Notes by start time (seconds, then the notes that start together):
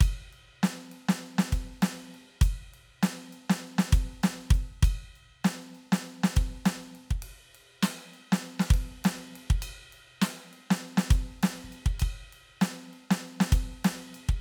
0.01 kick, ride bell
0.33 ride
0.63 snare, ride
0.92 ride
1.09 snare
1.39 snare
1.53 kick, ride bell
1.83 snare, ride
2.15 ride
2.42 kick, ride bell
2.74 ride
3.03 snare, ride bell
3.33 ride bell
3.50 snare
3.79 snare
3.93 kick, ride bell
4.24 snare, ride bell
4.51 kick, ride bell
4.83 kick, ride bell
5.16 ride bell
5.45 snare, ride
5.75 ride bell
5.92 snare
6.05 ride
6.24 snare
6.37 kick, ride bell
6.66 snare, ride bell
6.95 ride
7.11 kick
7.23 ride
7.55 ride
7.83 snare, ride bell
8.14 ride bell
8.32 snare
8.45 ride
8.60 snare
8.71 kick, ride
9.05 snare, ride
9.36 ride
9.50 kick
9.62 ride bell
9.93 ride
10.22 snare, ride bell
10.53 ride
10.71 snare
10.98 snare
11.11 kick, ride bell
11.43 snare, ride
11.64 kick
11.73 ride bell
11.86 kick
12.00 kick, ride bell
12.33 ride
12.62 snare, ride bell
12.94 ride
13.11 snare
13.41 snare
13.53 kick, ride bell
13.85 snare, ride
14.15 ride bell
14.29 kick